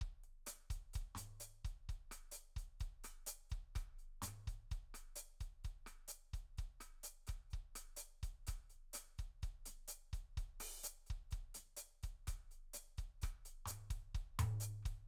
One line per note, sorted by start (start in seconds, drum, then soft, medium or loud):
0.01 kick soft
0.24 closed hi-hat soft
0.46 open hi-hat soft
0.46 cross-stick soft
0.46 snare soft
0.46 hi-hat pedal medium
0.70 closed hi-hat soft
0.70 kick soft
0.75 kick soft
0.93 closed hi-hat soft
0.93 kick soft
1.01 kick soft
1.15 closed hi-hat soft
1.15 snare soft
1.15 mid tom soft
1.40 closed hi-hat soft
1.40 hi-hat pedal medium
1.64 closed hi-hat soft
1.64 kick soft
1.89 closed hi-hat soft
1.89 kick soft
2.11 closed hi-hat soft
2.11 cross-stick soft
2.31 closed hi-hat soft
2.31 hi-hat pedal medium
2.56 closed hi-hat soft
2.56 kick soft
2.80 closed hi-hat soft
2.80 kick soft
3.04 open hi-hat medium
3.04 cross-stick soft
3.26 closed hi-hat soft
3.26 hi-hat pedal medium
3.50 closed hi-hat soft
3.50 kick soft
3.75 open hi-hat soft
3.75 kick soft
3.75 cross-stick soft
3.75 snare soft
3.98 closed hi-hat soft
4.22 closed hi-hat soft
4.22 snare soft
4.22 hi-hat pedal medium
4.22 mid tom soft
4.28 cross-stick soft
4.47 closed hi-hat soft
4.47 kick soft
4.71 closed hi-hat soft
4.71 kick soft
4.94 closed hi-hat soft
4.94 cross-stick soft
5.16 closed hi-hat soft
5.16 hi-hat pedal medium
5.40 closed hi-hat soft
5.40 kick soft
5.64 closed hi-hat soft
5.64 kick soft
5.86 closed hi-hat soft
5.86 cross-stick soft
5.86 snare soft
6.08 closed hi-hat soft
6.08 hi-hat pedal medium
6.33 closed hi-hat soft
6.33 kick soft
6.57 closed hi-hat soft
6.57 kick soft
6.80 closed hi-hat soft
6.80 cross-stick soft
7.03 closed hi-hat soft
7.03 hi-hat pedal medium
7.27 closed hi-hat soft
7.27 kick soft
7.27 cross-stick soft
7.50 open hi-hat soft
7.50 kick soft
7.75 closed hi-hat soft
7.75 cross-stick soft
7.96 closed hi-hat soft
7.96 hi-hat pedal medium
8.23 closed hi-hat soft
8.23 kick soft
8.47 closed hi-hat soft
8.47 kick soft
8.47 cross-stick soft
8.69 closed hi-hat soft
8.93 closed hi-hat soft
8.93 cross-stick soft
8.93 hi-hat pedal medium
9.18 closed hi-hat soft
9.18 kick soft
9.42 closed hi-hat soft
9.42 kick soft
9.65 closed hi-hat medium
9.65 snare soft
9.88 closed hi-hat soft
9.88 hi-hat pedal medium
10.13 closed hi-hat soft
10.13 kick soft
10.37 closed hi-hat soft
10.37 kick soft
10.60 open hi-hat medium
10.60 cross-stick soft
10.60 snare soft
10.83 hi-hat pedal medium
11.06 closed hi-hat soft
11.06 kick soft
11.31 closed hi-hat soft
11.31 kick soft
11.54 closed hi-hat medium
11.54 snare soft
11.76 closed hi-hat soft
11.76 hi-hat pedal medium
12.03 closed hi-hat soft
12.03 kick soft
12.27 closed hi-hat soft
12.27 kick soft
12.27 cross-stick soft
12.27 snare soft
12.33 kick soft
12.51 closed hi-hat soft
12.73 snare soft
12.73 hi-hat pedal medium
12.97 closed hi-hat soft
12.97 kick soft
13.21 open hi-hat soft
13.21 kick soft
13.21 cross-stick soft
13.21 snare soft
13.45 closed hi-hat soft
13.66 cross-stick soft
13.66 hi-hat pedal medium
13.66 mid tom soft
13.70 cross-stick soft
13.90 kick soft
13.90 closed hi-hat soft
14.14 closed hi-hat soft
14.14 kick soft
14.39 closed hi-hat medium
14.39 mid tom loud
14.60 closed hi-hat soft
14.60 hi-hat pedal medium
14.82 kick soft
14.82 cross-stick soft
14.82 closed hi-hat soft